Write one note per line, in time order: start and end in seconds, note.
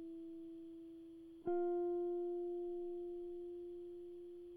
1.48 4.57 F4